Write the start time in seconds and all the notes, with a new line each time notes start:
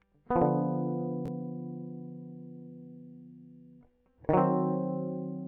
0.15 D3
0.30 B3
0.36 F3 B3
0.42 D3
4.29 D#3 F#3
4.35 D3 C4
4.90 D#3